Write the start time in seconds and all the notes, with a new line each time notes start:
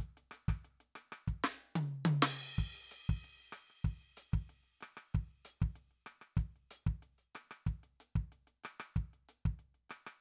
0.01 closed hi-hat
0.18 closed hi-hat
0.32 cross-stick, closed hi-hat
0.49 kick, cross-stick
0.65 closed hi-hat
0.81 closed hi-hat
0.96 cross-stick, closed hi-hat
1.13 cross-stick
1.28 kick, closed hi-hat
1.45 snare
1.59 closed hi-hat
1.76 high tom
2.06 high tom
2.23 snare, crash
2.59 kick, closed hi-hat
2.76 closed hi-hat
2.92 closed hi-hat
3.10 kick, snare
3.25 closed hi-hat
3.41 closed hi-hat
3.53 closed hi-hat, cross-stick
3.71 cross-stick
3.85 kick, closed hi-hat
4.02 closed hi-hat
4.18 closed hi-hat
4.33 kick, cross-stick
4.50 closed hi-hat
4.64 closed hi-hat
4.81 cross-stick, closed hi-hat
4.98 cross-stick
5.15 kick, closed hi-hat
5.31 closed hi-hat
5.46 closed hi-hat
5.61 kick, cross-stick
5.76 closed hi-hat
5.91 closed hi-hat
6.07 cross-stick, closed hi-hat
6.22 cross-stick
6.36 kick, hi-hat pedal
6.40 closed hi-hat
6.57 closed hi-hat
6.71 closed hi-hat
6.87 kick
7.03 closed hi-hat
7.19 closed hi-hat
7.36 cross-stick, closed hi-hat
7.52 cross-stick
7.67 kick, closed hi-hat
7.84 closed hi-hat
8.01 closed hi-hat
8.16 kick
8.33 closed hi-hat
8.48 closed hi-hat
8.64 cross-stick, closed hi-hat
8.80 cross-stick
8.97 kick, closed hi-hat
9.14 closed hi-hat
9.30 closed hi-hat
9.46 kick
9.60 closed hi-hat
9.75 closed hi-hat
9.90 cross-stick, closed hi-hat
10.07 cross-stick